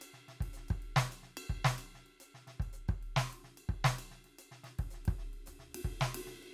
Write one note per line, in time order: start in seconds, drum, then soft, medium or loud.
0.01 hi-hat pedal medium
0.01 ride bell medium
0.14 snare soft
0.28 snare soft
0.28 ride soft
0.41 kick medium
0.41 ride medium
0.53 snare soft
0.53 hi-hat pedal medium
0.69 kick medium
0.69 ride bell soft
0.82 ride soft
0.96 snare loud
1.11 hi-hat pedal medium
1.11 ride bell medium
1.23 snare soft
1.37 ride bell loud
1.50 kick medium
1.65 snare loud
1.65 hi-hat pedal medium
1.78 ride bell medium
1.95 snare soft
2.06 snare soft
2.06 ride soft
2.20 hi-hat pedal medium
2.20 ride bell soft
2.34 snare soft
2.47 snare soft
2.47 ride soft
2.60 kick medium
2.60 ride bell soft
2.73 hi-hat pedal medium
2.89 kick medium
2.89 ride bell soft
3.03 ride soft
3.16 snare loud
3.29 hi-hat pedal medium
3.29 ride medium
3.44 snare soft
3.57 ride bell medium
3.69 kick medium
3.84 snare loud
3.84 hi-hat pedal medium
3.99 ride bell medium
4.09 snare soft
4.09 hi-hat pedal soft
4.24 snare soft
4.24 ride soft
4.39 hi-hat pedal medium
4.39 ride bell medium
4.51 snare soft
4.64 snare soft
4.64 ride soft
4.79 kick medium
4.79 ride medium
4.90 snare soft
4.90 hi-hat pedal medium
5.05 kick medium
5.05 ride medium
5.19 snare soft
5.33 ride soft
5.46 snare soft
5.46 hi-hat pedal medium
5.46 ride medium
5.46 floor tom soft
5.59 snare soft
5.71 hi-hat pedal soft
5.71 ride loud
5.85 kick medium
6.00 snare medium
6.00 hi-hat pedal medium
6.15 ride loud
6.27 snare soft
6.41 snare soft
6.41 ride soft